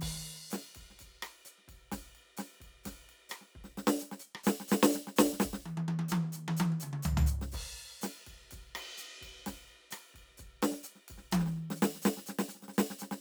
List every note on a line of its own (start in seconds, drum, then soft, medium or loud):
0.01 kick soft
0.01 hi-hat pedal medium
0.01 crash medium
0.14 kick soft
0.14 snare soft
0.51 snare medium
0.51 hi-hat pedal medium
0.51 ride medium
0.75 kick soft
0.75 ride medium
0.81 kick soft
0.91 snare soft
0.99 kick soft
0.99 hi-hat pedal soft
0.99 ride soft
1.06 kick soft
1.23 cross-stick medium
1.23 ride medium
1.45 hi-hat pedal medium
1.45 ride soft
1.58 snare soft
1.68 kick soft
1.68 ride soft
1.73 kick soft
1.92 kick soft
1.92 snare medium
1.92 hi-hat pedal soft
1.92 ride medium
1.98 kick soft
2.15 ride soft
2.37 snare medium
2.37 hi-hat pedal medium
2.37 ride medium
2.61 kick soft
2.61 ride soft
2.66 kick soft
2.84 kick soft
2.84 snare medium
2.84 hi-hat pedal soft
2.84 ride medium
2.91 kick soft
3.09 ride soft
3.30 cross-stick medium
3.30 hi-hat pedal medium
3.30 ride medium
3.41 snare soft
3.55 kick soft
3.61 kick soft
3.61 snare soft
3.78 snare medium
3.87 snare loud
3.99 snare soft
3.99 hi-hat pedal medium
4.12 snare medium
4.20 hi-hat pedal medium
4.35 cross-stick medium
4.44 snare loud
4.44 hi-hat pedal medium
4.60 snare soft
4.68 snare loud
4.68 hi-hat pedal medium
4.83 snare loud
4.92 snare soft
4.92 hi-hat pedal medium
5.07 snare soft
5.17 kick soft
5.17 snare loud
5.17 hi-hat pedal medium
5.33 snare soft
5.40 kick soft
5.40 snare loud
5.40 hi-hat pedal medium
5.50 kick soft
5.50 snare medium
5.61 hi-hat pedal soft
5.66 high tom medium
5.78 high tom medium
5.88 high tom loud
5.99 high tom medium
6.09 hi-hat pedal medium
6.09 high tom loud
6.25 high tom soft
6.33 hi-hat pedal medium
6.33 high tom soft
6.48 high tom loud
6.57 hi-hat pedal medium
6.57 high tom loud
6.72 high tom medium
6.80 hi-hat pedal medium
6.80 mid tom medium
6.93 mid tom medium
7.03 floor tom loud
7.03 hi-hat pedal medium
7.18 floor tom loud
7.27 kick soft
7.27 hi-hat pedal medium
7.42 snare medium
7.52 kick soft
7.52 hi-hat pedal medium
7.52 crash medium
8.02 snare medium
8.02 hi-hat pedal medium
8.02 ride medium
8.27 kick soft
8.27 ride medium
8.32 kick soft
8.41 snare soft
8.44 snare soft
8.51 kick soft
8.51 hi-hat pedal soft
8.51 ride medium
8.58 kick soft
8.75 cross-stick medium
8.75 ride medium
8.98 hi-hat pedal medium
8.98 ride soft
9.22 kick soft
9.22 ride soft
9.46 kick soft
9.46 snare medium
9.46 hi-hat pedal soft
9.46 ride medium
9.53 kick soft
9.68 ride soft
9.91 cross-stick medium
9.91 hi-hat pedal medium
9.91 ride medium
10.14 kick soft
10.14 ride soft
10.31 snare soft
10.38 kick soft
10.38 hi-hat pedal soft
10.38 ride soft
10.63 snare medium
10.63 ride medium
10.72 snare soft
10.84 hi-hat pedal medium
10.84 ride soft
10.96 snare soft
11.08 kick soft
11.08 ride medium
11.18 snare soft
11.32 kick soft
11.32 hi-hat pedal medium
11.32 high tom loud
11.40 snare soft
11.46 snare soft
11.71 snare medium
11.76 hi-hat pedal soft
11.83 snare loud
11.95 snare soft
12.02 snare loud
12.02 hi-hat pedal medium
12.17 snare soft
12.26 snare medium
12.26 hi-hat pedal medium
12.39 snare loud
12.49 snare soft
12.49 hi-hat pedal medium
12.55 snare soft
12.60 snare soft
12.63 snare soft
12.69 snare soft
12.74 hi-hat pedal soft
12.78 snare loud
12.91 snare soft
12.99 snare soft
12.99 hi-hat pedal medium
13.12 snare medium